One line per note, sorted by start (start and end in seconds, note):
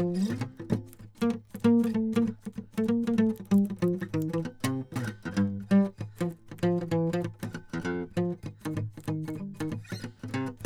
0.00 0.39 F#3
0.74 0.99 C4
1.23 1.34 A#3
1.66 1.84 A#3
1.85 1.92 A3
1.96 2.17 A3
2.17 2.28 A#3
2.79 2.89 A3
2.90 3.07 A#3
3.08 3.18 A#3
3.19 3.40 A3
3.52 3.76 G3
3.52 3.71 G3
3.83 3.99 F3
4.15 4.34 D#3
4.35 4.50 E3
4.65 4.88 C3
5.27 5.38 G2
5.38 5.53 G2
5.72 5.94 G3
6.22 6.37 F3
6.64 6.88 F3
6.92 7.02 E3
7.02 7.14 E3
7.15 7.25 F3
7.75 7.82 E2
7.87 8.08 F2
8.18 8.39 F3
8.66 8.74 D#3
8.78 8.92 D#3
9.09 9.28 D#3
9.29 9.36 D#3
9.37 9.48 D3
9.62 9.69 D#3
10.35 10.53 C3